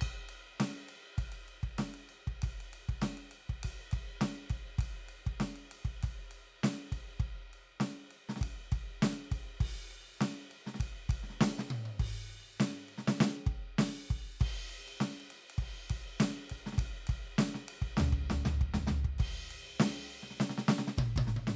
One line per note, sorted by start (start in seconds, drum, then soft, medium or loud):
0.01 kick medium
0.01 ride bell loud
0.29 ride medium
0.60 snare medium
0.60 ride loud
0.89 ride medium
1.18 kick medium
1.18 ride medium
1.32 ride medium
1.48 ride soft
1.63 kick soft
1.78 snare medium
1.78 ride medium
1.94 ride medium
2.09 ride bell soft
2.27 kick soft
2.42 kick medium
2.42 ride medium
2.60 ride medium
2.73 ride medium
2.89 kick medium
3.02 snare medium
3.02 ride bell medium
3.17 ride medium
3.31 ride medium
3.49 kick soft
3.63 kick soft
3.63 ride loud
3.92 kick medium
3.92 ride medium
4.21 snare loud
4.21 ride medium
4.50 kick medium
4.50 ride medium
4.79 kick medium
4.79 ride medium
5.09 ride medium
5.27 kick medium
5.40 snare medium
5.40 ride medium
5.56 ride medium
5.71 ride medium
5.85 kick medium
6.03 kick medium
6.03 ride medium
6.31 ride medium
6.63 snare loud
6.63 ride loud
6.92 kick soft
6.92 ride medium
7.20 kick medium
7.53 ride medium
7.80 snare medium
7.80 ride medium
8.11 ride medium
8.29 snare medium
8.36 snare soft
8.41 kick medium
8.41 ride loud
8.72 kick medium
8.72 ride medium
9.02 snare loud
9.02 ride loud
9.32 kick medium
9.32 ride medium
9.61 kick medium
9.61 crash medium
9.91 ride soft
10.21 snare loud
10.21 ride loud
10.51 ride medium
10.67 snare soft
10.74 snare soft
10.80 kick medium
10.80 ride medium
11.09 kick medium
11.09 ride medium
11.23 snare soft
11.29 snare soft
11.36 snare soft
11.41 snare loud
11.41 hi-hat pedal loud
11.59 snare medium
11.70 high tom loud
11.86 high tom medium
12.00 kick medium
12.00 crash medium
12.31 ride soft
12.60 snare loud
12.60 ride loud
12.89 ride soft
12.98 snare soft
13.08 snare loud
13.20 snare loud
13.47 kick medium
13.79 snare loud
13.79 crash medium
14.10 kick medium
14.40 kick medium
14.40 ride medium
14.70 ride medium
14.88 ride medium
15.00 snare medium
15.00 ride medium
15.20 ride medium
15.30 ride medium
15.50 ride medium
15.58 kick medium
15.58 ride medium
15.90 kick medium
15.90 ride medium
16.20 snare loud
16.20 hi-hat pedal soft
16.20 ride loud
16.50 kick soft
16.50 ride medium
16.66 snare medium
16.73 snare soft
16.78 kick medium
16.78 ride loud
17.07 kick medium
17.07 ride medium
17.38 snare loud
17.38 hi-hat pedal soft
17.38 ride loud
17.55 snare soft
17.65 hi-hat pedal soft
17.65 ride loud
17.82 kick medium
17.97 snare loud
17.97 floor tom loud
18.12 kick medium
18.30 snare medium
18.30 floor tom medium
18.45 snare medium
18.45 floor tom loud
18.61 kick medium
18.74 snare medium
18.74 floor tom medium
18.87 snare medium
18.87 floor tom medium
19.05 kick soft
19.19 kick medium
19.19 ride medium
19.51 ride medium
19.79 snare loud
19.79 hi-hat pedal soft
19.79 ride medium
20.07 hi-hat pedal soft
20.07 ride medium
20.23 snare soft
20.30 snare soft
20.37 snare soft
20.40 snare medium
20.40 hi-hat pedal loud
20.50 snare medium
20.58 snare medium
20.68 snare loud
20.78 snare medium
20.87 snare medium
20.98 kick medium
20.98 high tom loud
21.16 kick medium
21.16 high tom loud
21.27 snare soft
21.37 high tom medium
21.47 snare medium